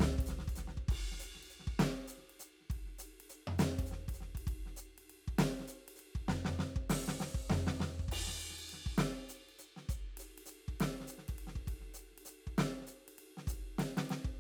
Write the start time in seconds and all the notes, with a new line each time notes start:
0.01 snare
0.19 kick, ride
0.27 snare, hi-hat pedal
0.48 kick, ride bell
0.56 snare, hi-hat pedal
0.68 snare
0.78 kick
0.89 kick, crash
1.12 snare
1.20 hi-hat pedal
1.24 ride
1.36 snare
1.43 ride
1.50 hi-hat pedal
1.60 snare
1.68 kick
1.80 snare, ride
2.08 hi-hat pedal, ride
2.18 snare
2.24 snare
2.30 ride
2.40 hi-hat pedal, ride
2.61 snare
2.70 kick, ride
2.87 snare
2.99 hi-hat pedal, ride
3.21 ride
3.30 hi-hat pedal
3.48 mid tom
3.59 snare, hi-hat pedal
3.79 kick, ride
3.87 hi-hat pedal
3.92 snare
4.09 kick, ride
4.14 hi-hat pedal
4.21 snare
4.35 kick, ride
4.47 kick, ride
4.67 snare
4.77 hi-hat pedal, ride
4.99 ride
5.10 ride
5.28 kick
5.39 snare, ride
5.60 snare
5.68 hi-hat pedal, ride
5.88 ride
5.97 hi-hat pedal, ride
6.16 kick
6.29 snare, mid tom
6.45 snare, mid tom
6.59 snare, mid tom
6.76 kick
6.90 open hi-hat, snare
7.08 open hi-hat, snare
7.21 open hi-hat, snare
7.35 kick
7.50 snare, mid tom
7.67 snare, mid tom
7.80 snare, mid tom
8.00 kick
8.09 kick, crash
8.28 snare
8.39 hi-hat pedal, ride
8.51 snare
8.59 ride
8.67 hi-hat pedal, ride
8.73 snare
8.87 kick
8.98 snare, ride
9.29 hi-hat pedal, ride
9.49 ride
9.59 hi-hat pedal
9.65 ride
9.77 snare
9.89 kick, hi-hat pedal
10.18 hi-hat pedal, ride
10.38 ride
10.46 hi-hat pedal, ride
10.69 kick
10.81 snare, ride
11.01 snare
11.08 hi-hat pedal, ride
11.19 snare
11.29 kick, ride
11.48 snare
11.56 kick
11.68 kick, ride
11.81 snare
11.95 hi-hat pedal
12.00 ride
12.12 snare
12.18 ride
12.26 hi-hat pedal
12.30 ride
12.47 kick
12.59 snare, ride
12.81 snare
12.87 hi-hat pedal, ride
13.09 ride
13.19 ride
13.38 snare
13.48 kick, hi-hat pedal, ride
13.79 snare, ride
13.98 snare, ride
14.10 snare, ride
14.25 kick